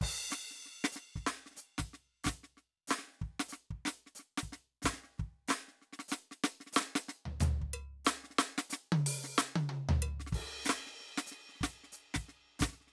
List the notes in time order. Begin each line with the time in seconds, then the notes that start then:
0.01 kick, crash
0.30 snare, hi-hat pedal
0.51 snare
0.55 snare
0.58 snare
0.61 snare
0.65 snare
0.84 snare
0.92 hi-hat pedal
0.96 snare
1.16 kick, snare
1.26 snare
1.46 snare
1.51 snare
1.55 snare, hi-hat pedal
1.59 snare
1.78 kick, snare
1.93 snare
2.24 kick, snare, hi-hat pedal
2.27 snare
2.43 snare
2.57 snare
2.87 snare, hi-hat pedal
2.91 snare
3.03 snare
3.08 snare
3.13 snare
3.19 kick, snare
3.22 snare
3.40 snare
3.48 hi-hat pedal
3.52 snare
3.70 kick
3.85 snare
3.87 snare
4.06 snare
4.15 hi-hat pedal
4.19 snare
4.37 snare
4.43 kick
4.52 snare
4.82 kick, snare, hi-hat pedal
4.85 snare
4.93 snare
4.96 snare
5.04 snare
5.12 snare
5.18 kick, snare
5.48 snare, hi-hat pedal
5.50 snare
5.68 snare
5.82 snare
5.93 snare
5.99 snare
6.08 snare, hi-hat pedal
6.31 snare
6.44 snare
6.60 snare
6.66 snare
6.71 snare, hi-hat pedal
6.76 snare
6.81 snare
6.95 snare
7.08 snare
7.25 floor tom
7.40 floor tom, hi-hat pedal
7.61 kick
7.73 percussion
8.05 snare, hi-hat pedal
8.24 snare
8.30 snare
8.35 snare
8.38 snare
8.58 snare
8.70 snare, hi-hat pedal
8.92 high tom
9.06 closed hi-hat
9.24 snare
9.37 snare, hi-hat pedal
9.56 high tom
9.69 high tom
9.89 floor tom
10.02 percussion
10.20 snare
10.26 snare
10.32 kick, snare, ride
10.65 snare, hi-hat pedal
10.69 snare
10.86 snare
11.00 snare
11.17 snare
11.26 hi-hat pedal
11.31 snare
11.49 snare
11.55 snare
11.59 kick, snare
11.63 snare
11.83 snare
11.92 hi-hat pedal
12.14 kick, snare
12.28 snare
12.59 kick, snare, hi-hat pedal
12.62 snare
12.68 snare
12.72 snare
12.81 snare
12.87 snare